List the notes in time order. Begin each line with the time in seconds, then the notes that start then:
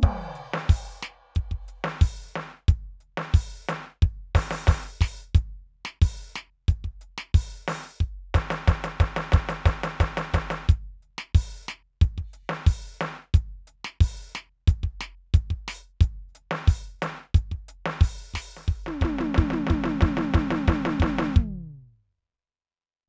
0.01 kick, hi-hat pedal, crash
0.35 closed hi-hat
0.54 snare
0.69 open hi-hat, kick
1.01 closed hi-hat, snare, hi-hat pedal
1.35 closed hi-hat, kick
1.51 kick
1.57 crash
1.68 closed hi-hat
1.84 snare
2.01 open hi-hat, kick
2.24 snare
2.34 snare, hi-hat pedal
2.68 closed hi-hat, kick
3.00 closed hi-hat
3.17 snare
3.34 open hi-hat, kick
3.66 closed hi-hat, snare, hi-hat pedal
4.02 kick
4.35 open hi-hat, kick, snare
4.51 open hi-hat, snare
4.67 open hi-hat, kick, snare
5.01 open hi-hat, kick, snare
5.35 closed hi-hat, kick
5.85 snare
6.02 open hi-hat, kick
6.34 closed hi-hat, snare, hi-hat pedal
6.68 closed hi-hat, kick
6.84 kick
7.01 closed hi-hat
7.18 snare
7.34 open hi-hat, kick
7.68 open hi-hat, snare
7.98 kick, hi-hat pedal
8.34 closed hi-hat, kick, snare
8.50 closed hi-hat, snare
8.68 closed hi-hat, kick, snare
8.84 closed hi-hat, snare
9.00 closed hi-hat, kick, snare
9.16 closed hi-hat, snare
9.32 closed hi-hat, kick, snare
9.49 closed hi-hat, snare
9.66 closed hi-hat, kick, snare
9.83 closed hi-hat, snare
10.00 closed hi-hat, kick, snare
10.17 closed hi-hat, snare
10.34 closed hi-hat, kick, snare
10.50 closed hi-hat, snare
10.69 closed hi-hat, kick
11.02 closed hi-hat
11.18 snare
11.35 open hi-hat, kick
11.66 closed hi-hat, snare, hi-hat pedal
12.01 closed hi-hat, kick
12.18 kick, crash
12.33 closed hi-hat
12.49 snare
12.67 open hi-hat, kick
12.99 closed hi-hat, snare, hi-hat pedal
13.34 closed hi-hat, kick
13.67 closed hi-hat
13.84 snare
14.01 open hi-hat, kick
14.33 closed hi-hat, snare, hi-hat pedal
14.68 closed hi-hat, kick
14.83 kick
15.00 closed hi-hat, snare, hi-hat pedal
15.34 open hi-hat, kick
15.50 kick
15.68 open hi-hat, snare
15.76 hi-hat pedal
16.01 closed hi-hat, kick
16.29 hi-hat pedal
16.35 closed hi-hat
16.51 snare
16.68 open hi-hat, kick
16.98 snare, hi-hat pedal
17.03 closed hi-hat
17.34 closed hi-hat, kick
17.52 kick
17.68 closed hi-hat
17.86 snare
18.01 open hi-hat, kick
18.34 open hi-hat, kick, snare
18.57 snare
18.68 kick
18.86 snare, floor tom
18.99 kick, snare, hi-hat pedal
19.04 floor tom
19.19 snare, floor tom
19.34 kick, snare, floor tom, hi-hat pedal
19.50 snare, floor tom
19.67 kick, snare, floor tom, hi-hat pedal
19.84 snare, floor tom
20.01 kick, snare, floor tom, hi-hat pedal
20.17 snare, floor tom
20.34 kick, snare, floor tom, hi-hat pedal
20.51 snare, floor tom
20.67 kick, snare, hi-hat pedal, floor tom
20.85 snare, floor tom
20.98 kick, snare, floor tom, hi-hat pedal
21.18 snare, floor tom
21.33 kick, hi-hat pedal